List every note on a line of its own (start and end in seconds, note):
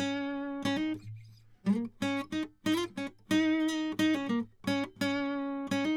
0.01 0.64 C#4
0.66 0.77 C#4
0.77 0.97 D#4
1.67 1.90 A#3
2.02 2.26 C#4
2.33 2.48 D#4
2.66 2.88 E4
2.98 3.13 C#4
3.31 3.94 D#4
3.99 4.14 D#4
4.15 4.37 C#4
4.30 4.46 A#3
4.68 4.89 C#4
5.02 5.69 C#4
5.72 5.84 C#4